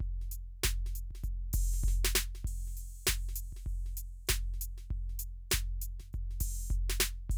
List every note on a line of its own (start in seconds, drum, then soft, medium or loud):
0.01 kick medium
0.01 closed hi-hat soft
0.22 snare soft
0.32 closed hi-hat loud
0.64 kick medium
0.64 snare loud
0.87 snare soft
0.96 closed hi-hat medium
1.11 kick soft
1.15 snare soft
1.24 kick soft
1.24 closed hi-hat medium
1.54 open hi-hat loud
1.54 kick medium
1.74 snare soft
1.84 kick medium
1.88 snare soft
2.05 snare loud
2.16 snare loud
2.35 snare soft
2.45 kick medium
2.45 crash medium
2.68 snare soft
2.77 open hi-hat medium
3.07 kick medium
3.07 snare loud
3.07 hi-hat pedal soft
3.29 snare soft
3.36 closed hi-hat loud
3.53 kick soft
3.53 snare soft
3.67 kick soft
3.67 closed hi-hat soft
3.86 snare soft
3.97 closed hi-hat loud
4.28 kick medium
4.28 snare loud
4.28 hi-hat pedal soft
4.54 snare soft
4.62 closed hi-hat loud
4.78 snare soft
4.91 kick medium
4.91 closed hi-hat soft
5.10 snare soft
5.20 closed hi-hat loud
5.51 kick medium
5.51 snare loud
5.51 hi-hat pedal soft
5.82 closed hi-hat loud
6.00 kick soft
6.00 snare soft
6.14 kick soft
6.14 closed hi-hat soft
6.31 snare soft
6.41 open hi-hat loud
6.41 kick medium
6.71 kick medium
6.71 hi-hat pedal medium
6.90 snare medium
7.01 snare loud
7.30 kick medium
7.30 crash medium